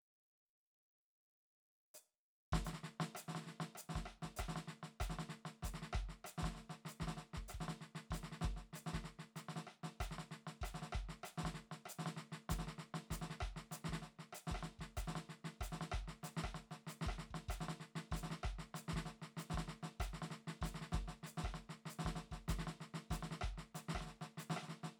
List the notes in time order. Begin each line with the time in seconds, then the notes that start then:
1.94 hi-hat pedal
2.52 kick, snare
2.59 kick
2.65 snare, hi-hat pedal
2.73 snare
3.00 snare
3.15 cross-stick, hi-hat pedal
3.28 snare
3.35 snare
3.41 snare
3.46 snare
3.60 snare
3.75 cross-stick, hi-hat pedal
3.89 snare
3.95 kick, snare
4.06 cross-stick
4.22 kick, snare
4.36 kick, cross-stick, hi-hat pedal
4.48 snare
4.56 snare
4.68 snare
4.83 snare
5.00 kick, cross-stick, hi-hat pedal
5.10 snare
5.19 snare
5.29 snare
5.45 snare
5.62 kick, snare, hi-hat pedal
5.74 snare
5.82 snare
5.93 kick, cross-stick
6.01 kick
6.09 snare
6.24 cross-stick, hi-hat pedal
6.38 snare
6.43 kick, snare
6.51 snare
6.55 snare
6.70 snare
6.85 snare, hi-hat pedal
7.00 kick, snare
7.07 snare
7.17 snare
7.33 kick, snare
7.48 cross-stick, hi-hat pedal
7.54 kick
7.60 snare
7.68 snare
7.81 snare
7.95 snare
8.11 kick, snare, hi-hat pedal
8.23 snare
8.32 snare
8.41 kick, snare
8.50 kick
8.56 snare
8.73 snare, hi-hat pedal
8.86 snare
8.93 kick, snare
9.04 snare
9.19 snare
9.36 snare, hi-hat pedal
9.49 snare
9.56 snare
9.67 cross-stick
9.83 snare
10.00 kick, cross-stick, hi-hat pedal
10.11 snare
10.18 snare
10.31 snare
10.47 snare
10.61 kick, cross-stick, hi-hat pedal
10.74 snare
10.82 snare
10.92 kick, cross-stick
11.09 snare
11.23 cross-stick, hi-hat pedal
11.38 snare
11.43 kick, snare
11.54 snare
11.71 snare
11.86 cross-stick, hi-hat pedal
11.99 snare
12.06 snare
12.17 snare
12.32 snare
12.49 kick, snare, hi-hat pedal
12.59 snare
12.67 snare
12.78 snare
12.94 snare
13.10 kick, snare, hi-hat pedal
13.21 snare
13.30 snare
13.40 kick, cross-stick
13.56 snare
13.71 snare, hi-hat pedal
13.84 snare
13.89 kick, snare
14.02 snare
14.19 snare
14.33 cross-stick, hi-hat pedal
14.47 snare
14.51 kick, cross-stick
14.63 snare
14.79 kick, snare
14.97 kick, cross-stick, hi-hat pedal
15.07 snare
15.15 snare
15.29 snare
15.44 snare
15.61 kick, cross-stick, hi-hat pedal
15.72 snare
15.81 snare
15.92 kick, cross-stick
16.08 snare
16.23 snare, hi-hat pedal
16.37 snare
16.44 kick, cross-stick
16.54 snare
16.71 snare
16.87 snare, hi-hat pedal
17.01 snare
17.06 kick, cross-stick
17.18 snare
17.30 kick, snare
17.49 kick, cross-stick, hi-hat pedal
17.61 snare
17.68 snare
17.80 snare
17.95 snare
18.12 kick, snare
18.16 hi-hat pedal
18.23 snare
18.30 snare
18.43 kick, cross-stick
18.59 snare
18.74 snare, hi-hat pedal
18.88 snare
18.93 kick, snare
19.05 snare
19.22 snare
19.37 snare, hi-hat pedal
19.50 kick, snare
19.57 snare
19.68 snare
19.83 snare
20.00 kick, cross-stick, hi-hat pedal
20.13 snare
20.22 snare
20.30 snare
20.47 snare
20.62 kick, snare, hi-hat pedal
20.74 snare
20.81 snare
20.92 kick, snare
21.01 kick
21.08 snare
21.23 snare, hi-hat pedal
21.37 snare
21.44 kick, cross-stick
21.54 snare
21.69 snare
21.86 snare
21.90 hi-hat pedal
21.99 snare
22.05 kick, snare
22.15 snare
22.31 kick, snare
22.48 kick, snare, hi-hat pedal
22.59 snare
22.67 snare
22.80 snare
22.94 snare
23.10 kick, snare, hi-hat pedal
23.23 snare
23.31 snare
23.41 kick, cross-stick
23.58 snare
23.75 snare, hi-hat pedal
23.89 snare
23.94 kick, cross-stick
24.01 snare
24.06 snare
24.21 snare
24.37 snare, hi-hat pedal
24.50 snare
24.56 cross-stick
24.62 snare
24.68 snare
24.83 snare